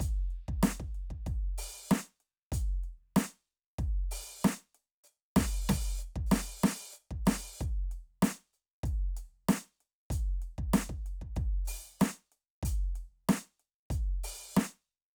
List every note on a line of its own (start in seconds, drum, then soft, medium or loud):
0.01 closed hi-hat loud
0.01 kick medium
0.31 closed hi-hat soft
0.49 kick medium
0.64 closed hi-hat loud
0.64 snare loud
0.81 kick medium
0.96 closed hi-hat soft
1.11 kick soft
1.27 kick medium
1.27 closed hi-hat soft
1.59 open hi-hat loud
1.92 open hi-hat medium
1.92 snare loud
1.92 hi-hat pedal medium
2.21 closed hi-hat soft
2.53 closed hi-hat loud
2.53 kick medium
2.85 closed hi-hat soft
3.17 closed hi-hat loud
3.17 snare loud
3.79 kick medium
3.79 closed hi-hat soft
4.12 open hi-hat loud
4.45 open hi-hat loud
4.45 snare loud
4.45 hi-hat pedal medium
4.76 closed hi-hat soft
5.05 hi-hat pedal soft
5.37 open hi-hat loud
5.37 kick medium
5.37 snare loud
5.70 open hi-hat loud
5.70 kick medium
5.70 snare loud
6.00 hi-hat pedal medium
6.17 kick medium
6.27 hi-hat pedal soft
6.32 open hi-hat loud
6.32 snare loud
6.64 open hi-hat loud
6.64 snare loud
6.94 hi-hat pedal medium
7.12 kick medium
7.26 open hi-hat loud
7.26 snare loud
7.26 hi-hat pedal soft
7.61 kick medium
7.61 hi-hat pedal medium
7.92 closed hi-hat soft
8.23 closed hi-hat loud
8.23 snare loud
8.54 closed hi-hat soft
8.84 kick medium
8.84 closed hi-hat medium
9.18 closed hi-hat medium
9.50 closed hi-hat loud
9.50 snare loud
9.81 closed hi-hat soft
10.11 closed hi-hat loud
10.11 kick medium
10.43 closed hi-hat soft
10.59 kick medium
10.74 closed hi-hat loud
10.74 snare loud
10.90 kick medium
11.07 closed hi-hat soft
11.22 kick soft
11.37 kick medium
11.37 closed hi-hat soft
11.66 open hi-hat loud
11.66 hi-hat pedal soft
12.01 closed hi-hat loud
12.01 snare loud
12.01 hi-hat pedal medium
12.33 closed hi-hat soft
12.64 closed hi-hat loud
12.64 kick medium
12.96 closed hi-hat soft
13.30 closed hi-hat loud
13.30 snare loud
13.61 closed hi-hat soft
13.91 closed hi-hat medium
13.91 kick medium
14.25 open hi-hat loud
14.58 snare loud
14.58 hi-hat pedal medium